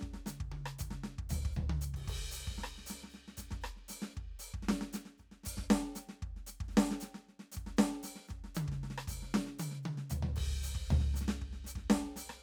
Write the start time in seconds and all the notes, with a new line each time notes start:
0.01 kick, snare
0.14 snare
0.26 snare, hi-hat pedal, high tom
0.40 kick
0.52 high tom
0.66 cross-stick
0.79 kick, hi-hat pedal, high tom
0.91 snare
1.04 snare
1.18 kick
1.29 floor tom, hi-hat pedal
1.45 kick
1.53 floor tom, hi-hat pedal
1.70 high tom
1.81 hi-hat pedal
1.94 kick, ride
2.04 kick, hi-hat pedal
2.09 crash
2.31 hi-hat pedal
2.47 kick, snare
2.58 snare
2.63 cross-stick
2.78 snare
2.86 snare, hi-hat pedal
3.03 snare
3.09 hi-hat pedal
3.14 snare
3.28 snare
3.37 kick, snare, hi-hat pedal
3.51 kick, snare
3.61 cross-stick, hi-hat pedal
3.76 snare
3.88 snare, hi-hat pedal
4.02 snare
4.13 snare, hi-hat pedal
4.17 kick
4.30 snare
4.39 hi-hat pedal
4.54 kick, snare
4.62 snare
4.69 snare
4.81 snare
4.93 snare, hi-hat pedal
5.05 snare
5.18 kick, snare, hi-hat pedal
5.31 snare
5.43 kick, snare, hi-hat pedal
5.57 kick, snare
5.69 snare, hi-hat pedal
5.80 snare
5.83 snare
5.95 snare, hi-hat pedal
6.09 snare
6.22 kick, snare
6.36 snare
6.46 snare, hi-hat pedal
6.60 kick, snare
6.68 snare, hi-hat pedal
6.73 snare
6.77 snare
6.91 snare
7.00 snare, hi-hat pedal
7.14 snare
7.29 snare
7.39 snare
7.52 snare, hi-hat pedal
7.57 kick
7.66 snare
7.77 snare, hi-hat pedal
7.93 snare
8.02 kick, snare, hi-hat pedal
8.16 snare
8.27 kick, snare, hi-hat pedal
8.44 snare
8.55 hi-hat pedal, high tom
8.68 kick, snare
8.83 snare
8.90 snare
8.98 cross-stick
9.07 kick, snare, hi-hat pedal
9.22 snare
9.32 snare, hi-hat pedal
9.46 snare
9.59 hi-hat pedal, high tom
9.71 snare
9.83 hi-hat pedal, high tom
9.97 snare
10.10 floor tom, hi-hat pedal
10.22 floor tom
10.36 kick, crash
10.63 hi-hat pedal
10.75 kick
10.89 floor tom, hi-hat pedal
11.00 snare
11.14 snare, hi-hat pedal
11.21 snare
11.28 snare
11.41 kick, snare
11.53 snare
11.64 snare, hi-hat pedal
11.75 kick, snare
11.90 snare, hi-hat pedal
12.02 snare
12.16 kick, snare, hi-hat pedal
12.29 cross-stick